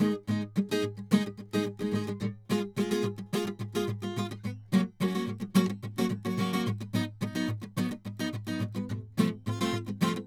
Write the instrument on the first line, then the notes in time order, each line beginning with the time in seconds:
acoustic guitar
0.01 G#3 D#4 G#4
0.28 G#3 D#4
0.59 G#4
0.72 G#3 D#4 G#4
1.13 G#3 D#4 G#4
1.54 G#3 D#4 G#4
1.80 G#3 D#4 G#4
1.93 G#3 D#4 G#4
2.10 G#3
2.51 G#3 F4 G#4
2.77 G#3 F4 G#4
2.92 G#3 B3 F4 G#4
3.34 G#3 F4 G#4
3.76 G#3 F4 G#4
4.04 F4
4.73 F#3 A#3
5.01 F#3 A#3 C#4 F#4
5.16 A#3 C#4 F#4
5.56 F#3 A#3 C#4 F#4
5.99 F#3 A#3 C#4 F#4
6.25 F#3 A#3 C#4 F#4
6.39 F#3 A#3 C#4 F#4
6.54 F#3 A#3 C#4 F#4
6.94 F#3 B3 D#4
7.22 F#3 B3 D#4
7.37 B3 D#4
7.78 F#3 B3 D#4
8.21 F#3 B3 D#4
8.48 F#3 B3 D#4
8.76 B3
8.91 A3
9.19 F3 A3 C4
9.47 A3 C4 F4
9.62 A3 C4 F4
10.02 F3 A3 C4 F4